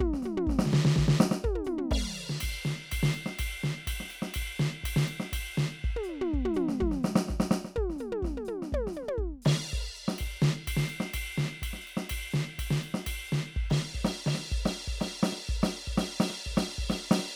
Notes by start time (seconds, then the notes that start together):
0.01 kick, floor tom
0.09 kick
0.15 snare
0.23 snare, floor tom, hi-hat pedal
0.38 floor tom
0.48 kick, snare
0.54 kick
0.60 snare
0.67 snare
0.71 snare, hi-hat pedal
0.86 snare
0.97 kick, snare
1.09 snare
1.19 snare, hi-hat pedal
1.32 snare
1.45 kick, mid tom
1.51 kick
1.56 kick, mid tom
1.66 floor tom, hi-hat pedal
1.79 floor tom
1.92 kick, crash
2.06 kick
2.16 hi-hat pedal
2.31 snare
2.42 kick, ride bell
2.50 kick
2.65 snare, hi-hat pedal
2.93 kick, ride bell
3.00 kick
3.04 snare
3.12 hi-hat pedal, ride
3.27 snare
3.40 kick, ride bell
3.47 kick
3.60 hi-hat pedal
3.65 snare
3.88 kick, ride bell
3.94 kick
4.01 snare
4.09 hi-hat pedal, ride
4.23 snare
4.35 kick, ride bell
4.43 kick
4.56 hi-hat pedal
4.61 snare
4.85 kick, ride bell
4.97 snare
5.04 hi-hat pedal
5.09 ride
5.21 snare
5.34 kick, ride bell
5.40 kick
5.54 hi-hat pedal
5.59 snare
5.85 kick
5.91 kick
5.96 kick, mid tom
6.05 hi-hat pedal
6.10 high tom
6.22 floor tom
6.35 kick
6.42 kick, floor tom
6.55 hi-hat pedal, floor tom
6.70 snare
6.81 kick, floor tom
6.92 snare
7.04 snare, hi-hat pedal
7.17 snare
7.30 kick, snare
7.37 kick
7.41 snare
7.52 snare, hi-hat pedal
7.66 snare
7.77 kick, mid tom
7.85 kick
7.91 snare
7.97 snare, hi-hat pedal
8.01 snare, mid tom
8.13 mid tom
8.23 kick, snare
8.29 kick
8.38 mid tom
8.46 hi-hat pedal, mid tom
8.63 snare
8.73 kick, high tom
8.88 snare
8.94 hi-hat pedal, high tom
9.04 snare
9.09 high tom
9.19 kick
9.24 kick
9.43 hi-hat pedal, crash
9.47 snare
9.74 kick
9.80 kick
9.96 hi-hat pedal
10.09 snare
10.19 kick, ride bell
10.28 kick
10.43 snare, hi-hat pedal
10.68 kick, ride
10.78 snare
10.89 hi-hat pedal, ride
11.01 snare
11.15 kick, ride bell
11.34 hi-hat pedal
11.39 snare
11.46 snare
11.63 kick, ride bell
11.70 kick
11.74 snare
11.82 hi-hat pedal
11.88 ride
11.98 snare
12.11 kick, ride bell
12.32 snare, hi-hat pedal
12.60 kick, ride bell
12.72 snare
12.79 hi-hat pedal
12.84 ride
12.95 snare
13.07 kick, ride bell
13.27 hi-hat pedal
13.33 snare
13.57 kick
13.65 kick
13.67 kick
13.71 snare, hi-hat pedal, crash
13.96 kick
14.06 snare, crash
14.27 snare, crash
14.36 snare
14.53 kick
14.60 kick
14.66 snare, crash
14.89 kick
15.01 snare, crash
15.24 snare, crash
15.33 snare
15.50 kick
15.57 kick
15.63 snare, crash
15.89 kick
15.99 snare, crash
16.21 snare, crash
16.31 snare
16.47 kick
16.53 kick
16.58 snare, crash
16.79 kick
16.86 kick
16.90 snare, crash
17.12 snare, crash
17.20 snare